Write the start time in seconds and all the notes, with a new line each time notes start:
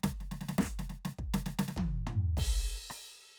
0.04 kick, snare
0.21 snare
0.32 snare
0.42 snare
0.49 snare
0.59 kick, snare
0.80 snare
0.90 snare
1.06 snare
1.19 kick, cross-stick
1.35 snare
1.47 snare
1.60 snare
1.69 snare
1.77 kick, high tom
2.08 mid tom
2.38 kick, crash
2.68 open hi-hat
2.91 open hi-hat, cross-stick
3.19 open hi-hat